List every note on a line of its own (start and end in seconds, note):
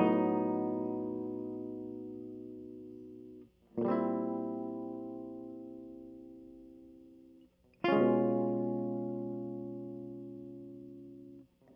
0.00 3.52 A2
0.00 0.06 C3
3.80 7.48 A#2
3.80 4.17 D3
3.86 7.35 G3
3.86 7.49 C4
3.92 7.47 E4
7.85 11.43 F4
7.89 11.44 G#3
7.89 11.46 C#4
7.99 11.49 B2
7.99 8.05 D3